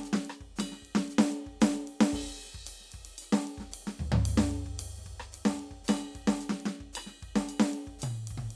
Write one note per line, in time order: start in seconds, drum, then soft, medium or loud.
0.04 hi-hat pedal medium
0.04 ride soft
0.13 snare loud
0.25 ride medium
0.30 cross-stick medium
0.41 kick soft
0.56 snare medium
0.56 hi-hat pedal medium
0.60 ride bell loud
0.72 snare soft
0.82 kick soft
0.82 ride soft
0.95 snare loud
1.08 hi-hat pedal medium
1.08 ride soft
1.18 snare loud
1.32 ride soft
1.46 kick soft
1.61 snare loud
1.61 hi-hat pedal medium
1.61 ride bell medium
1.71 snare soft
1.87 ride medium
2.01 snare loud
2.13 kick soft
2.13 hi-hat pedal medium
2.13 crash loud
2.25 kick soft
2.54 kick soft
2.66 hi-hat pedal medium
2.66 ride loud
2.80 snare soft
2.85 snare soft
2.92 kick soft
2.92 snare soft
2.92 ride medium
2.94 snare soft
3.05 ride medium
3.18 hi-hat pedal medium
3.18 ride bell medium
3.33 snare loud
3.47 ride medium
3.58 kick soft
3.58 snare soft
3.72 hi-hat pedal medium
3.72 ride loud
3.87 snare medium
3.99 kick soft
3.99 floor tom medium
4.12 floor tom loud
4.25 hi-hat pedal medium
4.25 ride loud
4.37 snare loud
4.51 ride soft
4.66 kick soft
4.79 hi-hat pedal medium
4.79 ride loud
4.98 snare soft
5.06 kick soft
5.06 ride soft
5.20 cross-stick medium
5.32 hi-hat pedal medium
5.32 ride medium
5.45 snare loud
5.59 ride soft
5.71 kick soft
5.84 hi-hat pedal medium
5.84 ride bell loud
5.89 snare loud
6.15 kick soft
6.15 ride medium
6.27 snare loud
6.40 hi-hat pedal medium
6.40 ride bell medium
6.49 snare medium
6.60 ride soft
6.66 snare medium
6.80 kick soft
6.93 hi-hat pedal medium
6.93 ride bell loud
6.97 cross-stick medium
7.06 snare soft
7.22 kick soft
7.22 ride soft
7.36 snare medium
7.48 hi-hat pedal medium
7.48 ride bell medium
7.60 snare loud
7.73 ride medium
7.87 kick soft
7.99 hi-hat pedal medium
7.99 ride bell loud
8.03 mid tom loud
8.27 kick soft
8.27 ride medium
8.36 kick soft
8.36 mid tom loud
8.51 ride medium